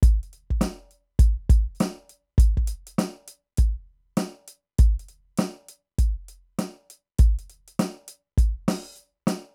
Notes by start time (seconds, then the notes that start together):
0.03 kick, closed hi-hat
0.23 closed hi-hat
0.33 closed hi-hat
0.50 kick
0.61 snare, closed hi-hat
0.91 closed hi-hat
1.19 closed hi-hat, kick
1.50 kick, closed hi-hat
1.75 hi-hat pedal
1.80 snare, closed hi-hat
2.09 closed hi-hat
2.38 kick, closed hi-hat
2.57 kick
2.67 closed hi-hat
2.87 closed hi-hat
2.98 snare, closed hi-hat
3.28 closed hi-hat
3.57 kick, closed hi-hat
4.17 closed hi-hat, snare
4.48 closed hi-hat
4.79 kick, closed hi-hat
4.99 closed hi-hat
5.08 closed hi-hat
5.38 closed hi-hat, snare
5.69 closed hi-hat
5.99 kick, closed hi-hat
6.28 closed hi-hat
6.59 snare, closed hi-hat
6.90 closed hi-hat
7.19 kick, closed hi-hat
7.39 closed hi-hat
7.50 closed hi-hat
7.68 closed hi-hat
7.79 snare, closed hi-hat
8.08 closed hi-hat
8.38 kick, closed hi-hat
8.68 snare, open hi-hat
8.96 hi-hat pedal
9.27 snare, closed hi-hat